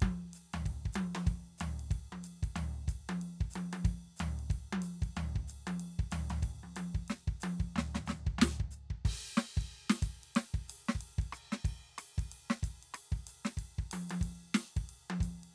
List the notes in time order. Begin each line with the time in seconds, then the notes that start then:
0.01 kick, high tom, ride
0.34 hi-hat pedal, ride
0.54 floor tom, ride
0.66 kick, ride
0.86 kick
0.93 hi-hat pedal, high tom, ride
1.15 high tom, ride
1.27 kick, ride
1.59 floor tom, hi-hat pedal, ride
1.80 ride
1.91 kick, ride
2.13 high tom
2.24 hi-hat pedal, ride
2.43 kick, ride
2.56 floor tom, ride
2.88 kick, hi-hat pedal, ride
3.10 high tom, ride
3.22 ride
3.41 kick
3.51 hi-hat pedal, ride
3.56 kick, high tom
3.73 high tom, ride
3.85 kick, ride
4.17 floor tom, hi-hat pedal, ride
4.40 ride
4.51 kick, ride
4.73 high tom
4.83 hi-hat pedal, ride
5.02 kick, ride
5.17 floor tom, ride
5.36 kick
5.48 hi-hat pedal, ride
5.67 high tom, ride
5.80 ride
5.99 kick
6.11 floor tom, hi-hat pedal, ride
6.31 floor tom, ride
6.43 kick, ride
6.64 high tom
6.76 hi-hat pedal, high tom, ride
6.95 kick
7.09 snare, ride
7.28 kick
7.41 hi-hat pedal, high tom, ride
7.60 kick
7.76 snare, floor tom
7.95 snare, floor tom
8.07 snare, floor tom, hi-hat pedal
8.27 kick
8.39 snare, floor tom
8.60 kick
8.71 hi-hat pedal
8.91 kick
9.06 kick, crash
9.38 snare, hi-hat pedal, ride
9.57 kick
9.62 ride
9.73 ride
9.90 snare
10.03 kick, hi-hat pedal, ride
10.24 ride
10.36 snare, ride
10.54 kick
10.69 hi-hat pedal, ride
10.89 snare
10.96 kick
11.01 ride
11.19 kick, ride
11.33 cross-stick, hi-hat pedal, ride
11.53 snare
11.65 kick, ride
11.99 cross-stick, hi-hat pedal, ride
12.18 kick, ride
12.32 ride
12.51 snare
12.63 kick, hi-hat pedal, ride
12.83 ride
12.95 cross-stick, ride
13.12 kick
13.27 hi-hat pedal, ride
13.45 snare, ride
13.58 kick, ride
13.79 kick
13.92 hi-hat pedal, high tom, ride
14.10 high tom, ride
14.22 kick, ride
14.55 snare, hi-hat pedal, ride
14.77 kick, ride
14.90 ride
15.11 high tom
15.21 kick, hi-hat pedal, ride
15.44 ride